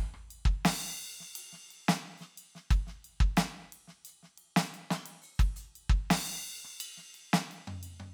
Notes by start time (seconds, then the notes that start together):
0.14 cross-stick
0.31 ride bell
0.46 kick
0.65 snare, crash
0.99 ride
1.20 snare
1.36 hi-hat pedal, ride
1.53 snare
1.71 ride
1.89 snare
1.94 hi-hat pedal
2.18 snare, hi-hat pedal
2.38 ride bell
2.55 snare
2.71 kick, ride bell
2.87 snare
3.05 ride bell
3.21 kick
3.37 snare, ride bell
3.73 ride
3.88 snare
4.05 hi-hat pedal, ride bell
4.23 snare
4.38 ride
4.57 snare
4.62 hi-hat pedal
4.74 ride bell
4.91 snare
5.06 ride
5.22 open hi-hat
5.40 kick, ride
5.56 closed hi-hat
5.76 ride bell
5.90 kick
6.11 snare, crash
6.45 ride bell
6.65 cross-stick
6.81 ride bell
6.98 snare
7.15 ride
7.34 snare
7.51 ride
7.68 high tom
7.83 ride bell
8.00 high tom